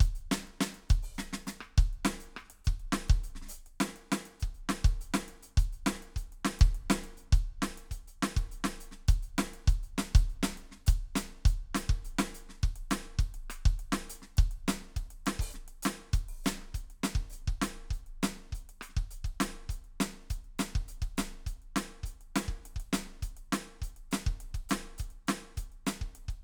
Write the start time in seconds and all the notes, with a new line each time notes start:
0.01 closed hi-hat, kick
0.16 closed hi-hat
0.32 snare
0.48 closed hi-hat
0.61 snare
0.75 closed hi-hat
0.90 closed hi-hat, kick
1.03 open hi-hat
1.19 snare, hi-hat pedal
1.33 snare
1.48 snare, hi-hat pedal
1.61 cross-stick
1.78 kick, closed hi-hat
1.94 closed hi-hat
2.06 snare
2.14 snare
2.21 closed hi-hat
2.37 cross-stick
2.45 snare
2.51 closed hi-hat
2.65 closed hi-hat, kick
2.80 closed hi-hat
2.93 snare
3.09 kick, closed hi-hat
3.24 closed hi-hat
3.36 snare
3.42 snare
3.46 snare
3.49 snare, hi-hat pedal
3.53 closed hi-hat
3.67 closed hi-hat
3.81 snare
3.88 snare
3.97 closed hi-hat
4.12 snare
4.26 snare, closed hi-hat
4.40 closed hi-hat, kick
4.55 closed hi-hat
4.70 snare
4.85 kick, closed hi-hat
5.02 closed hi-hat
5.14 snare
5.29 closed hi-hat
5.43 closed hi-hat
5.58 closed hi-hat, kick
5.73 closed hi-hat
5.87 snare
5.95 snare
6.03 closed hi-hat
6.17 closed hi-hat, kick
6.33 closed hi-hat
6.45 snare
6.60 kick, closed hi-hat
6.75 closed hi-hat
6.91 snare
7.04 closed hi-hat
7.18 closed hi-hat
7.33 closed hi-hat, kick
7.48 closed hi-hat
7.63 snare
7.71 snare
7.78 closed hi-hat
7.92 closed hi-hat, kick
8.08 closed hi-hat
8.23 snare
8.37 kick, snare, closed hi-hat
8.52 closed hi-hat
8.65 snare
8.81 closed hi-hat
8.92 snare
9.09 closed hi-hat, kick
9.23 closed hi-hat
9.39 snare
9.54 closed hi-hat
9.68 closed hi-hat, kick
9.84 closed hi-hat
9.99 snare
10.15 closed hi-hat, kick
10.30 closed hi-hat
10.44 snare
10.51 snare
10.58 closed hi-hat
10.72 snare
10.76 snare
10.87 closed hi-hat, kick
11.16 closed hi-hat, snare
11.46 closed hi-hat, kick
11.75 closed hi-hat, snare
11.90 kick
12.05 closed hi-hat
12.19 snare
12.35 closed hi-hat
12.50 snare
12.53 snare
12.63 kick, closed hi-hat
12.76 closed hi-hat
12.91 closed hi-hat, snare
13.03 snare
13.19 kick, closed hi-hat
13.35 closed hi-hat
13.50 closed hi-hat, cross-stick
13.66 kick
13.80 closed hi-hat
13.93 snare, closed hi-hat
14.08 closed hi-hat, snare
14.23 snare
14.38 kick, closed hi-hat
14.52 closed hi-hat
14.69 closed hi-hat, snare
14.83 snare
14.97 kick, closed hi-hat
15.11 closed hi-hat
15.27 snare, closed hi-hat
15.40 open hi-hat, kick
15.51 snare, hi-hat pedal
15.69 closed hi-hat
15.83 closed hi-hat, snare
16.14 closed hi-hat, kick, snare
16.29 open hi-hat
16.45 closed hi-hat, snare, hi-hat pedal
16.62 cross-stick
16.75 closed hi-hat, kick
16.91 closed hi-hat
17.04 closed hi-hat, snare
17.16 kick
17.30 closed hi-hat, hi-hat pedal
17.48 kick
17.62 closed hi-hat, snare
17.91 closed hi-hat, kick
18.07 closed hi-hat
18.23 closed hi-hat, snare
18.53 closed hi-hat, kick
18.70 closed hi-hat
18.82 closed hi-hat, cross-stick
18.90 snare
18.97 kick
19.11 closed hi-hat
19.25 kick, closed hi-hat
19.41 closed hi-hat, snare
19.49 snare
19.70 closed hi-hat, kick
19.85 closed hi-hat
20.01 closed hi-hat, snare
20.31 closed hi-hat, kick
20.45 closed hi-hat
20.59 closed hi-hat, snare
20.69 snare
20.76 kick
20.89 closed hi-hat
21.02 kick, closed hi-hat
21.18 closed hi-hat, snare
21.47 closed hi-hat, kick
21.62 closed hi-hat
21.77 closed hi-hat, snare
22.04 closed hi-hat, kick
22.21 closed hi-hat
22.36 closed hi-hat, snare
22.44 snare
22.49 kick
22.62 snare, closed hi-hat
22.77 kick, closed hi-hat
22.94 closed hi-hat, snare
23.23 closed hi-hat, kick
23.37 closed hi-hat
23.53 closed hi-hat, snare
23.82 closed hi-hat, kick
23.97 closed hi-hat
24.12 closed hi-hat, snare
24.27 kick
24.41 closed hi-hat
24.55 kick, closed hi-hat
24.70 closed hi-hat, snare
24.99 closed hi-hat, kick
25.11 closed hi-hat
25.28 closed hi-hat, snare
25.58 closed hi-hat, kick
25.62 snare
25.72 closed hi-hat
25.87 closed hi-hat, snare
26.02 kick
26.16 closed hi-hat
26.29 kick, closed hi-hat